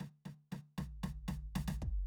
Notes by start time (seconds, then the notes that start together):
0.00 snare, floor tom
0.26 snare, floor tom
0.52 snare, floor tom
0.78 snare, floor tom
1.04 snare, floor tom
1.28 snare, floor tom
1.56 snare, floor tom
1.68 snare, floor tom
1.82 kick